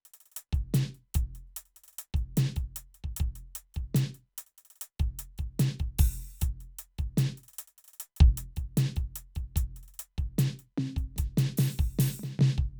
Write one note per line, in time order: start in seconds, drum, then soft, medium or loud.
0.05 closed hi-hat medium
0.14 closed hi-hat medium
0.20 closed hi-hat soft
0.26 closed hi-hat soft
0.32 closed hi-hat soft
0.36 closed hi-hat loud
0.53 kick medium
0.53 closed hi-hat soft
0.73 closed hi-hat loud
0.73 kick soft
0.73 snare loud
0.95 closed hi-hat soft
1.14 closed hi-hat loud
1.14 kick medium
1.35 closed hi-hat soft
1.47 closed hi-hat soft
1.56 closed hi-hat loud
1.66 closed hi-hat soft
1.76 closed hi-hat medium
1.84 closed hi-hat soft
1.88 closed hi-hat soft
1.93 closed hi-hat soft
1.99 closed hi-hat loud
2.14 kick medium
2.14 closed hi-hat soft
2.37 closed hi-hat loud
2.37 snare loud
2.56 kick medium
2.56 closed hi-hat medium
2.76 closed hi-hat loud
2.94 closed hi-hat soft
3.04 kick soft
3.17 closed hi-hat loud
3.17 kick medium
3.36 closed hi-hat medium
3.55 closed hi-hat loud
3.74 kick soft
3.74 closed hi-hat soft
3.95 closed hi-hat loud
3.95 snare loud
4.14 closed hi-hat soft
4.38 closed hi-hat loud
4.46 closed hi-hat soft
4.58 closed hi-hat medium
4.65 closed hi-hat soft
4.70 closed hi-hat soft
4.76 closed hi-hat soft
4.81 closed hi-hat loud
4.99 kick medium
4.99 closed hi-hat soft
5.19 closed hi-hat loud
5.38 kick soft
5.38 closed hi-hat soft
5.60 closed hi-hat loud
5.60 snare loud
5.79 kick medium
5.79 closed hi-hat soft
5.99 open hi-hat loud
5.99 kick loud
6.39 closed hi-hat loud
6.39 kick medium
6.39 hi-hat pedal medium
6.61 closed hi-hat soft
6.79 closed hi-hat loud
6.98 kick medium
6.98 closed hi-hat soft
7.18 closed hi-hat loud
7.18 snare loud
7.37 closed hi-hat soft
7.43 closed hi-hat soft
7.48 closed hi-hat medium
7.59 closed hi-hat loud
7.68 closed hi-hat soft
7.78 closed hi-hat soft
7.84 closed hi-hat soft
7.93 closed hi-hat soft
8.00 closed hi-hat loud
8.17 kick loud
8.17 closed hi-hat medium
8.37 closed hi-hat loud
8.56 kick soft
8.56 closed hi-hat medium
8.77 closed hi-hat loud
8.77 snare loud
8.96 kick medium
8.96 closed hi-hat soft
9.16 closed hi-hat loud
9.35 kick soft
9.35 closed hi-hat soft
9.56 closed hi-hat loud
9.56 kick medium
9.76 closed hi-hat soft
9.83 closed hi-hat soft
9.88 closed hi-hat soft
9.94 closed hi-hat soft
9.99 closed hi-hat loud
10.18 kick medium
10.18 closed hi-hat soft
10.38 closed hi-hat loud
10.38 snare loud
10.59 closed hi-hat soft
10.78 snare medium
10.78 high tom loud
10.96 kick medium
10.96 closed hi-hat soft
11.16 closed hi-hat loud
11.16 kick medium
11.16 snare soft
11.38 closed hi-hat loud
11.38 snare loud
11.58 open hi-hat loud
11.58 snare loud
11.78 kick medium
11.78 open hi-hat soft
11.99 open hi-hat loud
11.99 snare loud
12.20 hi-hat pedal soft
12.20 mid tom medium
12.24 snare medium
12.39 snare loud
12.39 floor tom loud
12.58 kick medium